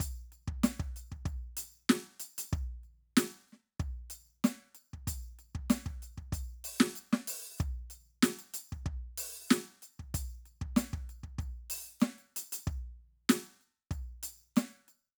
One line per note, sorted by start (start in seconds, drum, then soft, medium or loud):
0.01 kick medium
0.01 percussion loud
0.33 percussion soft
0.49 kick medium
0.64 snare loud
0.64 percussion loud
0.81 kick medium
0.97 percussion medium
1.13 kick soft
1.26 kick medium
1.26 percussion soft
1.58 percussion loud
1.90 snare loud
1.90 percussion medium
2.21 percussion loud
2.39 percussion loud
2.54 kick loud
2.84 percussion soft
3.18 snare loud
3.18 percussion loud
3.49 snare soft
3.49 percussion soft
3.80 kick medium
3.80 percussion soft
4.11 percussion medium
4.45 snare loud
4.45 percussion medium
4.76 percussion medium
4.94 kick soft
5.08 kick medium
5.08 percussion loud
5.40 percussion soft
5.56 kick medium
5.71 snare loud
5.71 percussion loud
5.87 kick medium
6.03 percussion medium
6.19 kick soft
6.33 kick medium
6.33 percussion medium
6.65 percussion loud
6.81 snare loud
6.96 percussion medium
7.14 snare loud
7.28 percussion loud
7.60 kick loud
7.60 percussion medium
7.61 percussion soft
7.91 percussion medium
8.24 snare loud
8.24 percussion loud
8.40 percussion medium
8.55 percussion loud
8.73 kick medium
8.87 kick medium
9.19 percussion loud
9.51 snare loud
9.51 percussion medium
9.53 percussion loud
9.83 percussion medium
10.00 kick soft
10.15 kick medium
10.15 percussion loud
10.47 percussion soft
10.62 kick medium
10.77 snare loud
10.77 percussion loud
10.94 kick medium
11.10 percussion soft
11.24 kick soft
11.39 kick medium
11.39 percussion soft
11.71 percussion loud
12.01 snare loud
12.01 percussion medium
12.03 percussion soft
12.19 percussion soft
12.37 percussion loud
12.53 percussion loud
12.68 kick medium
13.30 snare loud
13.30 percussion loud
13.62 percussion soft
13.92 kick medium
13.92 percussion soft
14.24 percussion loud
14.57 snare loud
14.57 percussion medium
14.89 percussion soft